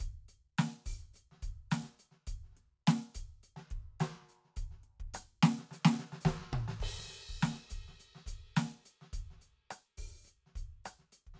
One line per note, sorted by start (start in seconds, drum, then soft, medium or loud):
0.01 closed hi-hat medium
0.01 kick soft
0.10 kick soft
0.30 closed hi-hat soft
0.59 closed hi-hat medium
0.59 snare loud
0.87 open hi-hat medium
0.87 kick soft
0.93 kick soft
1.00 snare soft
1.15 closed hi-hat soft
1.15 hi-hat pedal soft
1.33 snare soft
1.37 snare soft
1.41 closed hi-hat medium
1.41 kick soft
1.41 snare soft
1.49 kick soft
1.72 closed hi-hat medium
1.72 snare medium
1.72 hi-hat pedal soft
1.84 snare soft
2.00 closed hi-hat soft
2.13 snare soft
2.28 closed hi-hat medium
2.28 kick soft
2.45 snare soft
2.51 snare soft
2.54 snare soft
2.54 closed hi-hat soft
2.88 closed hi-hat medium
2.88 snare loud
3.16 closed hi-hat medium
3.16 kick soft
3.44 closed hi-hat soft
3.58 snare soft
3.72 kick soft
3.72 closed hi-hat soft
4.01 closed hi-hat medium
4.01 snare loud
4.14 snare soft
4.30 open hi-hat soft
4.30 hi-hat pedal soft
4.46 snare soft
4.58 closed hi-hat medium
4.58 kick soft
4.64 kick soft
4.72 snare soft
4.85 closed hi-hat soft
5.01 kick soft
5.15 closed hi-hat loud
5.15 cross-stick medium
5.44 snare loud
5.59 snare soft
5.72 snare soft
5.72 hi-hat pedal medium
5.86 snare loud
5.92 snare soft
6.00 snare soft
6.13 snare soft
6.22 hi-hat pedal medium
6.26 kick soft
6.26 snare loud
6.42 snare soft
6.54 kick soft
6.54 mid tom loud
6.69 snare medium
6.81 kick soft
6.81 crash medium
6.91 kick soft
6.99 snare soft
7.08 snare soft
7.13 closed hi-hat soft
7.30 kick soft
7.42 open hi-hat medium
7.42 snare loud
7.54 snare soft
7.71 closed hi-hat medium
7.71 kick soft
7.89 snare soft
8.01 closed hi-hat soft
8.16 snare soft
8.26 closed hi-hat medium
8.26 kick soft
8.26 snare soft
8.58 closed hi-hat medium
8.58 snare loud
8.87 closed hi-hat soft
9.03 snare soft
9.14 closed hi-hat medium
9.14 kick soft
9.20 kick soft
9.32 snare soft
9.38 snare soft
9.43 closed hi-hat soft
9.72 closed hi-hat medium
9.72 cross-stick medium
9.99 open hi-hat medium
9.99 kick soft
10.25 closed hi-hat soft
10.25 hi-hat pedal soft
10.47 snare soft
10.53 kick soft
10.53 snare soft
10.58 closed hi-hat soft
10.85 closed hi-hat medium
10.85 cross-stick medium
10.85 hi-hat pedal soft
11.00 snare soft
11.13 closed hi-hat soft
11.28 kick soft
11.35 snare soft